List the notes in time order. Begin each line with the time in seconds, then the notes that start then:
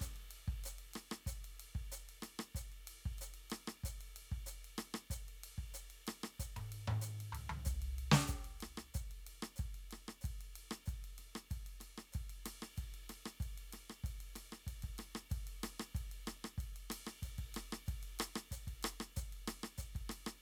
0.01 kick, hi-hat pedal, ride
0.16 ride
0.31 ride
0.48 kick
0.64 hi-hat pedal, ride
0.79 ride
0.94 cross-stick, ride
1.11 cross-stick
1.26 kick, hi-hat pedal, ride
1.44 ride
1.60 ride
1.75 kick
1.92 hi-hat pedal, ride
2.09 ride
2.22 cross-stick, ride
2.39 cross-stick
2.55 kick, hi-hat pedal, ride
2.72 ride
2.87 ride
3.06 kick
3.18 hi-hat pedal, ride
3.34 ride
3.50 cross-stick, ride
3.68 cross-stick
3.84 kick, hi-hat pedal, ride
4.01 ride
4.16 ride
4.32 kick
4.46 hi-hat pedal, ride
4.64 ride
4.78 cross-stick, ride
4.94 cross-stick
5.10 kick, hi-hat pedal, ride
5.28 ride
5.44 ride
5.58 kick
5.74 hi-hat pedal, ride
5.90 ride
6.07 cross-stick, ride
6.23 cross-stick
6.39 kick, hi-hat pedal, ride
6.56 high tom, ride
6.72 ride
6.88 high tom
7.01 hi-hat pedal, ride
7.20 ride
7.32 floor tom, ride
7.49 floor tom
7.65 kick, hi-hat pedal, ride
7.82 ride
7.98 ride
8.12 snare
8.27 kick, hi-hat pedal, ride
8.45 ride
8.61 cross-stick, ride
8.77 cross-stick
8.94 kick, hi-hat pedal, ride
9.11 ride
9.27 ride
9.42 cross-stick
9.56 kick, hi-hat pedal, ride
9.74 ride
9.91 cross-stick, ride
10.08 cross-stick
10.21 kick, hi-hat pedal
10.25 ride
10.41 ride
10.56 ride
10.71 cross-stick
10.86 kick, hi-hat pedal, ride
11.04 ride
11.18 cross-stick, ride
11.35 cross-stick
11.50 kick, hi-hat pedal, ride
11.66 ride
11.80 cross-stick, ride
11.98 cross-stick
12.12 kick, hi-hat pedal, ride
12.30 ride
12.46 cross-stick, ride
12.62 cross-stick
12.76 kick, hi-hat pedal, ride
12.94 ride
13.09 cross-stick, ride
13.26 cross-stick
13.40 kick, hi-hat pedal, ride
13.58 ride
13.73 cross-stick, ride
13.90 cross-stick
14.04 kick, hi-hat pedal, ride
14.20 ride
14.36 cross-stick, ride
14.52 cross-stick
14.67 kick, hi-hat pedal, ride
14.82 kick, ride
14.98 cross-stick, ride
15.15 cross-stick
15.30 kick, hi-hat pedal, ride
15.47 ride
15.63 cross-stick, ride
15.80 cross-stick
15.95 kick, hi-hat pedal, ride
16.12 ride
16.27 cross-stick, ride
16.44 cross-stick
16.58 kick, hi-hat pedal, ride
16.76 ride
16.90 cross-stick, ride
17.07 cross-stick
17.22 kick, hi-hat pedal, ride
17.38 kick, ride
17.54 cross-stick, ride
17.72 cross-stick
17.86 kick, hi-hat pedal, ride
18.03 ride
18.19 cross-stick, ride
18.36 cross-stick
18.51 kick, hi-hat pedal, ride
18.67 kick, ride
18.83 cross-stick, ride
19.00 cross-stick
19.16 kick, hi-hat pedal, ride
19.33 ride
19.48 cross-stick, ride
19.63 cross-stick
19.78 kick, hi-hat pedal, ride
19.95 kick, ride
20.09 cross-stick, ride
20.26 cross-stick